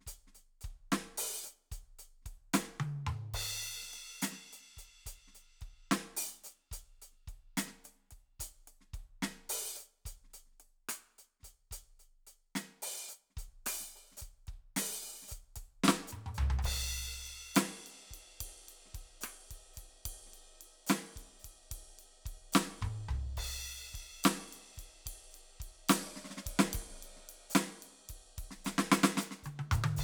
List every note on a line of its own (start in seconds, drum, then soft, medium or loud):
0.01 snare soft
0.07 closed hi-hat medium
0.07 kick soft
0.27 snare soft
0.33 closed hi-hat soft
0.33 snare soft
0.36 snare soft
0.61 closed hi-hat soft
0.61 kick soft
0.70 kick soft
0.92 snare medium
0.92 closed hi-hat soft
1.18 open hi-hat loud
1.18 snare soft
1.44 closed hi-hat soft
1.44 hi-hat pedal medium
1.72 closed hi-hat soft
1.72 kick soft
1.99 closed hi-hat soft
2.22 kick soft
2.22 snare soft
2.26 closed hi-hat soft
2.54 closed hi-hat loud
2.54 snare loud
2.64 snare soft
2.80 high tom loud
3.07 mid tom medium
3.34 kick soft
3.34 crash loud
3.63 closed hi-hat soft
3.83 snare soft
3.91 snare soft
3.91 closed hi-hat soft
3.94 snare soft
4.22 closed hi-hat loud
4.22 snare medium
4.33 snare soft
4.53 closed hi-hat soft
4.77 closed hi-hat soft
4.77 kick soft
5.06 closed hi-hat medium
5.06 kick soft
5.28 snare soft
5.34 closed hi-hat soft
5.34 snare soft
5.61 kick soft
5.61 closed hi-hat soft
5.91 closed hi-hat medium
5.91 snare loud
6.17 open hi-hat loud
6.44 closed hi-hat soft
6.44 hi-hat pedal medium
6.72 closed hi-hat medium
6.72 kick soft
7.02 closed hi-hat soft
7.12 snare soft
7.28 kick soft
7.28 closed hi-hat soft
7.57 closed hi-hat loud
7.57 snare medium
7.85 snare soft
7.85 closed hi-hat soft
7.85 hi-hat pedal soft
8.11 kick soft
8.11 closed hi-hat soft
8.40 closed hi-hat medium
8.40 kick soft
8.68 closed hi-hat soft
8.81 snare soft
8.94 kick soft
8.94 closed hi-hat soft
8.99 kick soft
9.23 snare medium
9.23 closed hi-hat soft
9.50 open hi-hat loud
9.76 closed hi-hat soft
9.76 hi-hat pedal medium
10.06 closed hi-hat medium
10.06 kick soft
10.24 snare soft
10.29 snare soft
10.34 closed hi-hat soft
10.34 snare soft
10.46 snare soft
10.51 snare soft
10.60 closed hi-hat soft
10.89 closed hi-hat loud
10.89 cross-stick medium
11.19 closed hi-hat soft
11.40 kick soft
11.40 snare soft
11.45 closed hi-hat soft
11.45 snare soft
11.71 closed hi-hat medium
11.71 kick soft
12.00 closed hi-hat soft
12.27 closed hi-hat soft
12.56 closed hi-hat medium
12.56 snare medium
12.82 open hi-hat loud
13.09 closed hi-hat soft
13.09 hi-hat pedal medium
13.30 snare soft
13.35 kick soft
13.35 snare soft
13.38 closed hi-hat soft
13.38 snare soft
13.43 kick soft
13.66 open hi-hat loud
13.66 cross-stick medium
13.81 snare soft
13.95 open hi-hat soft
14.12 snare soft
14.17 snare soft
14.17 hi-hat pedal medium
14.20 closed hi-hat soft
14.20 kick soft
14.20 snare soft
14.47 kick soft
14.47 closed hi-hat soft
14.54 kick soft
14.77 open hi-hat loud
14.77 snare medium
15.04 open hi-hat soft
15.04 snare soft
15.23 snare soft
15.27 snare soft
15.27 hi-hat pedal medium
15.31 closed hi-hat soft
15.31 kick soft
15.56 kick soft
15.56 closed hi-hat medium
15.84 snare loud
15.88 snare loud
16.08 hi-hat pedal medium
16.13 mid tom medium
16.26 mid tom medium
16.35 floor tom loud
16.35 hi-hat pedal soft
16.50 floor tom loud
16.59 hi-hat pedal soft
16.59 floor tom medium
16.64 kick soft
16.64 crash loud
16.71 kick soft
17.26 ride soft
17.55 snare loud
17.55 hi-hat pedal medium
17.55 ride loud
17.86 ride soft
18.09 kick soft
18.09 snare soft
18.14 ride medium
18.41 kick soft
18.41 ride loud
18.69 ride medium
18.86 snare soft
18.92 kick soft
18.92 snare soft
18.92 ride medium
19.21 cross-stick medium
19.21 hi-hat pedal medium
19.21 ride loud
19.51 kick soft
19.51 ride medium
19.74 kick soft
19.74 hi-hat pedal soft
19.74 ride medium
20.06 kick soft
20.06 ride loud
20.26 snare soft
20.31 snare soft
20.31 ride soft
20.61 ride medium
20.87 snare loud
20.87 hi-hat pedal medium
20.87 ride loud
21.16 kick soft
21.16 snare soft
21.16 ride soft
21.40 hi-hat pedal soft
21.45 kick soft
21.45 ride medium
21.72 kick soft
21.72 ride medium
21.99 hi-hat pedal soft
21.99 ride soft
22.26 kick soft
22.26 ride medium
22.53 snare loud
22.53 hi-hat pedal medium
22.53 ride loud
22.62 snare soft
22.82 kick soft
22.82 mid tom loud
23.09 kick soft
23.09 floor tom loud
23.16 kick soft
23.37 kick soft
23.37 crash loud
23.43 kick soft
23.92 kick soft
23.92 snare soft
23.92 ride medium
24.24 snare loud
24.24 hi-hat pedal medium
24.24 ride loud
24.48 hi-hat pedal soft
24.53 snare soft
24.53 ride medium
24.64 snare soft
24.75 kick soft
24.75 hi-hat pedal soft
24.79 ride medium
25.06 kick soft
25.06 ride medium
25.31 hi-hat pedal soft
25.31 ride soft
25.60 kick soft
25.60 ride medium
25.89 snare loud
25.89 hi-hat pedal loud
25.89 ride loud
26.16 snare soft
26.25 snare soft
26.30 snare soft
26.37 snare soft
26.47 kick soft
26.47 ride medium
26.59 snare loud
26.73 kick soft
26.73 ride loud
26.82 kick soft
26.91 snare soft
27.03 ride medium
27.17 snare soft
27.22 snare soft
27.29 ride medium
27.50 hi-hat pedal medium
27.55 snare loud
27.55 ride loud
27.83 ride medium
28.09 kick soft
28.09 ride medium
28.38 kick soft
28.38 ride medium
28.44 kick soft
28.51 snare soft
28.65 snare medium
28.65 hi-hat pedal medium
28.78 snare loud
28.92 snare loud
28.92 hi-hat pedal medium
29.04 snare loud
29.18 snare loud
29.18 hi-hat pedal medium
29.31 snare soft
29.43 kick soft
29.43 hi-hat pedal soft
29.43 high tom medium
29.59 high tom medium
29.72 kick soft
29.72 hi-hat pedal medium
29.72 mid tom loud
29.84 high tom loud
29.97 kick soft
29.97 hi-hat pedal medium
29.97 crash loud